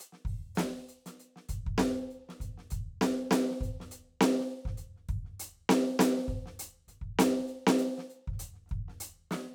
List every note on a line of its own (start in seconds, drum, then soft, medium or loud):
0.00 closed hi-hat medium
0.12 snare soft
0.25 open hi-hat soft
0.25 kick medium
0.55 snare loud
0.55 hi-hat pedal medium
0.59 closed hi-hat medium
0.77 snare soft
0.89 closed hi-hat soft
1.06 closed hi-hat medium
1.06 snare soft
1.20 closed hi-hat soft
1.36 snare soft
1.49 closed hi-hat medium
1.49 kick medium
1.66 kick medium
1.78 open hi-hat medium
1.78 snare loud
1.78 hi-hat pedal medium
2.10 closed hi-hat soft
2.29 snare soft
2.29 closed hi-hat soft
2.40 closed hi-hat medium
2.40 kick soft
2.58 snare soft
2.70 closed hi-hat medium
2.70 kick medium
3.01 closed hi-hat medium
3.01 snare loud
3.31 closed hi-hat medium
3.31 snare loud
3.50 snare soft
3.60 closed hi-hat soft
3.60 kick medium
3.80 snare soft
3.91 closed hi-hat medium
4.21 closed hi-hat medium
4.21 snare loud
4.40 snare soft
4.65 kick medium
4.65 snare soft
4.77 closed hi-hat medium
4.96 snare soft
5.09 kick medium
5.09 closed hi-hat soft
5.25 snare soft
5.29 snare soft
5.40 closed hi-hat loud
5.69 closed hi-hat medium
5.69 snare loud
5.99 closed hi-hat loud
5.99 snare loud
6.17 snare soft
6.28 kick medium
6.28 closed hi-hat soft
6.46 snare soft
6.59 closed hi-hat loud
6.88 closed hi-hat soft
6.88 kick soft
6.88 snare soft
7.01 kick soft
7.19 closed hi-hat loud
7.19 snare loud
7.39 snare soft
7.48 closed hi-hat soft
7.67 snare loud
7.78 closed hi-hat medium
7.98 snare soft
8.10 closed hi-hat soft
8.27 kick medium
8.32 snare soft
8.39 closed hi-hat loud
8.54 snare soft
8.66 snare soft
8.66 closed hi-hat soft
8.71 kick medium
8.88 snare soft
9.00 closed hi-hat loud
9.31 closed hi-hat medium
9.31 snare medium
9.36 snare soft